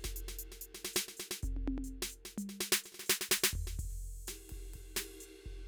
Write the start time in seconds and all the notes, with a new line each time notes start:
0.01 snare, hi-hat pedal
0.06 kick
0.11 kick
0.17 closed hi-hat
0.29 snare
0.39 open hi-hat
0.52 snare
0.62 open hi-hat
0.75 snare
0.85 snare
0.94 snare, hi-hat pedal
1.09 snare
1.18 snare, hi-hat pedal
1.32 snare
1.43 kick, hi-hat pedal, high tom
1.51 kick
1.57 high tom
1.68 high tom
1.79 high tom
1.85 hi-hat pedal
2.03 snare
2.10 hi-hat pedal
2.26 snare
2.38 hi-hat pedal, mid tom
2.50 snare
2.61 snare
2.73 snare
2.84 snare, hi-hat pedal
2.93 snare
2.95 snare
3.00 snare
3.04 snare, hi-hat pedal
3.10 snare
3.22 snare
3.29 kick, snare, hi-hat pedal
3.44 snare
3.54 kick, floor tom
3.60 kick
3.68 snare
3.80 kick, crash
3.86 kick
3.91 snare
4.28 snare, hi-hat pedal, ride
4.50 kick, snare, ride
4.58 kick, snare
4.65 snare
4.69 snare
4.74 kick, hi-hat pedal, ride
4.81 kick
4.97 snare, ride
5.21 hi-hat pedal
5.36 snare
5.45 kick, ride
5.52 kick